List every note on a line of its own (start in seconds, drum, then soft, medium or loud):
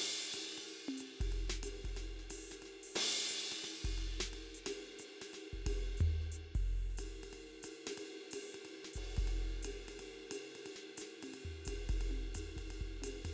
0.32 hi-hat pedal medium
0.32 ride medium
0.58 ride medium
0.88 high tom medium
0.98 hi-hat pedal medium
0.98 ride medium
1.21 kick soft
1.21 ride medium
1.32 ride medium
1.50 snare medium
1.63 hi-hat pedal loud
1.63 ride medium
1.85 kick soft
1.85 ride medium
1.97 snare soft
1.97 ride medium
2.19 snare soft
2.30 hi-hat pedal loud
2.30 ride medium
2.51 snare soft
2.51 ride medium
2.62 snare soft
2.62 ride medium
2.83 hi-hat pedal medium
2.96 snare medium
2.96 ride loud
3.19 snare soft
3.29 hi-hat pedal medium
3.29 ride medium
3.52 snare soft
3.52 ride medium
3.64 snare soft
3.64 ride medium
3.85 kick soft
3.85 ride medium
3.98 ride medium
4.20 snare medium
4.33 ride medium
4.55 hi-hat pedal medium
4.66 snare medium
4.66 ride loud
4.99 hi-hat pedal medium
4.99 ride medium
5.22 snare soft
5.22 ride medium
5.34 snare soft
5.34 ride medium
5.53 kick soft
5.66 kick soft
5.66 ride loud
5.90 snare soft
5.97 floor tom loud
5.97 hi-hat pedal medium
6.22 snare soft
6.32 snare soft
6.32 hi-hat pedal medium
6.55 kick medium
6.55 crash soft
6.90 snare soft
6.98 hi-hat pedal medium
6.98 ride medium
7.23 ride medium
7.33 ride medium
7.63 hi-hat pedal medium
7.63 ride medium
7.87 snare medium
7.87 ride loud
7.98 ride medium
8.31 hi-hat pedal medium
8.31 ride loud
8.55 ride medium
8.65 ride medium
8.70 snare soft
8.70 hi-hat pedal soft
8.85 snare soft
8.93 kick soft
8.93 hi-hat pedal medium
8.93 ride soft
9.17 kick medium
9.17 ride medium
9.28 ride medium
9.53 snare soft
9.63 hi-hat pedal medium
9.63 ride medium
9.88 ride medium
9.99 ride medium
10.31 hi-hat pedal medium
10.31 ride loud
10.55 ride medium
10.66 ride medium
10.76 snare soft
10.98 snare soft
10.98 hi-hat pedal loud
10.98 ride medium
11.23 high tom medium
11.23 ride medium
11.34 ride medium
11.45 floor tom soft
11.65 kick soft
11.65 hi-hat pedal medium
11.65 ride medium
11.89 kick soft
11.89 ride medium
12.01 ride medium
12.11 high tom soft
12.35 floor tom soft
12.35 hi-hat pedal medium
12.35 ride medium
12.57 kick soft
12.57 ride medium
12.70 ride medium
12.81 kick soft
13.02 hi-hat pedal medium
13.02 high tom soft
13.02 ride loud
13.25 floor tom medium
13.25 ride medium